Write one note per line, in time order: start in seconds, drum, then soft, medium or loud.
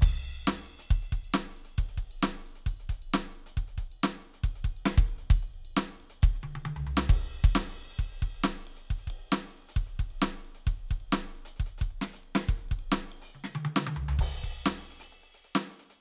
0.01 kick loud
0.01 crash loud
0.25 ride medium
0.35 ride soft
0.47 snare loud
0.70 ride soft
0.79 closed hi-hat loud
0.91 kick loud
0.91 ride soft
1.02 closed hi-hat medium
1.12 kick medium
1.12 ride soft
1.25 ride bell soft
1.34 snare loud
1.46 ride soft
1.57 ride bell soft
1.65 closed hi-hat medium
1.78 kick loud
1.78 ride loud
1.89 closed hi-hat medium
1.98 kick medium
2.11 ride bell medium
2.23 snare loud
2.35 ride soft
2.46 ride bell soft
2.56 closed hi-hat medium
2.66 kick medium
2.66 ride bell soft
2.80 closed hi-hat medium
2.89 closed hi-hat medium
2.89 kick medium
3.02 ride bell soft
3.14 snare loud
3.24 ride bell soft
3.36 ride soft
3.46 closed hi-hat medium
3.57 kick medium
3.57 ride medium
3.68 closed hi-hat medium
3.78 closed hi-hat medium
3.78 kick medium
3.92 ride bell soft
4.04 snare loud
4.26 ride soft
4.34 closed hi-hat medium
4.44 kick medium
4.44 ride medium
4.56 closed hi-hat medium
4.65 kick medium
4.65 ride soft
4.77 ride bell soft
4.86 snare loud
4.97 kick loud
4.97 ride soft
5.08 ride medium
5.19 closed hi-hat medium
5.30 kick loud
5.30 ride bell medium
5.43 closed hi-hat soft
5.54 ride soft
5.65 ride bell soft
5.77 snare loud
5.89 ride bell soft
6.00 ride medium
6.10 closed hi-hat medium
6.23 kick loud
6.23 ride loud
6.35 snare soft
6.43 high tom medium
6.56 high tom loud
6.65 high tom loud
6.76 floor tom loud
6.87 floor tom medium
6.97 snare loud
7.10 kick loud
7.10 crash medium
7.21 closed hi-hat medium
7.31 closed hi-hat soft
7.44 kick loud
7.55 snare loud
7.55 crash medium
7.80 ride soft
7.91 closed hi-hat medium
7.99 kick medium
8.04 ride soft
8.12 closed hi-hat soft
8.22 kick medium
8.22 ride soft
8.35 ride medium
8.44 snare loud
8.56 ride bell soft
8.67 ride medium
8.77 closed hi-hat medium
8.90 kick medium
8.90 ride soft
8.99 closed hi-hat soft
9.07 kick medium
9.07 ride loud
9.32 snare loud
9.32 ride medium
9.58 ride soft
9.69 closed hi-hat loud
9.76 kick loud
9.76 ride soft
9.87 closed hi-hat soft
9.99 kick medium
9.99 ride medium
10.11 ride medium
10.22 snare loud
10.33 ride soft
10.45 ride soft
10.55 closed hi-hat medium
10.67 kick loud
10.67 ride soft
10.77 closed hi-hat soft
10.89 kick medium
10.89 ride soft
11.00 ride medium
11.13 snare loud
11.24 ride medium
11.36 ride soft
11.45 closed hi-hat loud
11.56 closed hi-hat medium
11.56 kick medium
11.66 closed hi-hat medium
11.78 closed hi-hat loud
11.78 kick medium
11.91 closed hi-hat soft
12.02 snare loud
12.14 closed hi-hat loud
12.24 ride medium
12.35 snare loud
12.49 kick loud
12.58 closed hi-hat medium
12.69 kick medium
12.69 ride soft
12.79 ride medium
12.92 snare loud
13.12 ride loud
13.22 open hi-hat loud
13.35 hi-hat pedal soft
13.35 high tom soft
13.44 snare medium
13.55 high tom loud
13.65 high tom loud
13.76 snare loud
13.87 high tom loud
13.97 floor tom loud
14.09 floor tom loud
14.19 kick medium
14.19 crash loud
14.44 kick medium
14.66 snare loud
14.79 closed hi-hat soft
14.91 closed hi-hat medium
15.00 closed hi-hat loud
15.13 closed hi-hat medium
15.24 closed hi-hat soft
15.34 closed hi-hat medium
15.44 closed hi-hat medium
15.55 snare loud
15.69 closed hi-hat medium
15.80 closed hi-hat medium
15.90 closed hi-hat medium